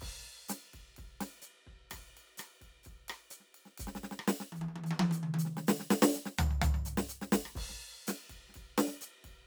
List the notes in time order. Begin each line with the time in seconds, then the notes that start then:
0.01 kick, crash
0.08 kick
0.23 snare
0.49 snare, hi-hat pedal, ride
0.74 kick, snare, ride
0.97 kick, ride
1.04 kick
1.21 snare, ride
1.42 hi-hat pedal
1.67 kick
1.72 kick
1.90 kick, cross-stick, hi-hat pedal, ride
1.98 kick
2.17 ride
2.38 cross-stick, hi-hat pedal, ride
2.61 kick, ride
2.83 kick, hi-hat pedal, ride
3.08 cross-stick, ride
3.30 hi-hat pedal, ride
3.40 snare
3.55 ride
3.66 snare
3.78 kick, hi-hat pedal, ride
3.86 kick, snare
3.95 snare
4.04 snare
4.11 snare
4.19 cross-stick
4.28 snare
4.40 snare
4.52 hi-hat pedal, high tom
4.58 kick, high tom
4.69 high tom
4.76 high tom
4.84 hi-hat pedal, high tom
4.91 high tom
4.99 high tom
5.11 hi-hat pedal, high tom
5.23 mid tom
5.34 high tom
5.39 hi-hat pedal
5.45 snare
5.57 snare
5.67 snare, hi-hat pedal
5.80 snare
5.90 snare, hi-hat pedal
6.02 snare
6.14 snare, hi-hat pedal
6.26 snare
6.38 hi-hat pedal, floor tom
6.51 floor tom
6.62 hi-hat pedal, floor tom
6.74 floor tom
6.85 floor tom, hi-hat pedal
6.98 snare
7.09 hi-hat pedal
7.22 snare
7.32 kick, snare, hi-hat pedal
7.38 kick
7.46 cross-stick
7.56 kick, hi-hat pedal, crash
7.67 kick, snare
8.07 snare, hi-hat pedal, ride
8.30 kick, ride
8.35 kick
8.49 snare
8.54 kick, hi-hat pedal, ride
8.78 snare, ride
8.87 snare
9.01 hi-hat pedal, ride
9.24 kick, ride
9.29 kick